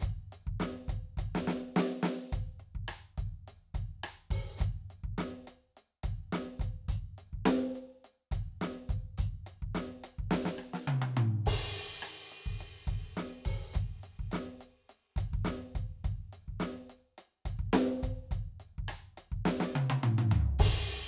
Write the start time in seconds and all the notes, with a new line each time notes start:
0.01 kick, closed hi-hat, hi-hat pedal
0.33 closed hi-hat
0.47 kick
0.60 snare, closed hi-hat
0.88 kick, closed hi-hat
1.18 kick, closed hi-hat
1.35 snare
1.48 snare
1.77 snare
2.03 snare
2.33 kick, closed hi-hat
2.60 closed hi-hat
2.75 kick
2.88 cross-stick, closed hi-hat
3.18 kick, closed hi-hat
3.48 closed hi-hat
3.75 kick, closed hi-hat
4.04 cross-stick, closed hi-hat
4.31 kick, open hi-hat
4.58 kick, closed hi-hat, hi-hat pedal
4.91 closed hi-hat
5.04 kick
5.11 kick
5.18 snare, closed hi-hat
5.48 closed hi-hat
5.77 closed hi-hat
6.04 kick, closed hi-hat
6.33 snare, closed hi-hat
6.60 kick, closed hi-hat
6.89 closed hi-hat, kick
7.18 closed hi-hat
7.33 kick
7.46 snare, closed hi-hat
7.76 closed hi-hat
8.05 closed hi-hat
8.32 kick, closed hi-hat
8.62 snare, closed hi-hat
8.89 kick, closed hi-hat
9.18 closed hi-hat, kick
9.47 closed hi-hat
9.62 kick
9.75 snare, closed hi-hat
10.04 closed hi-hat
10.19 kick
10.31 snare
10.46 snare
10.59 cross-stick
10.74 snare
10.88 high tom
11.02 high tom
11.17 mid tom
11.46 kick, crash
11.74 closed hi-hat
12.03 cross-stick, closed hi-hat
12.32 closed hi-hat
12.46 kick
12.61 closed hi-hat
12.87 kick, closed hi-hat
13.17 snare, closed hi-hat
13.45 kick, open hi-hat
13.74 kick, closed hi-hat, hi-hat pedal
14.04 closed hi-hat
14.19 kick
14.32 snare, closed hi-hat
14.61 closed hi-hat
14.90 closed hi-hat
15.17 kick, closed hi-hat
15.34 kick
15.45 snare, closed hi-hat
15.75 kick, closed hi-hat
16.05 kick, closed hi-hat
16.33 closed hi-hat
16.48 kick
16.60 snare, closed hi-hat
16.90 closed hi-hat
17.18 closed hi-hat
17.46 kick, closed hi-hat
17.59 kick
17.73 snare, closed hi-hat
18.03 kick, closed hi-hat
18.31 kick, closed hi-hat
18.60 closed hi-hat
18.78 kick
18.89 cross-stick, closed hi-hat
19.18 closed hi-hat
19.32 kick
19.46 snare
19.60 snare
19.76 high tom
19.90 high tom
20.04 mid tom
20.19 mid tom
20.32 floor tom
20.59 kick, crash, ride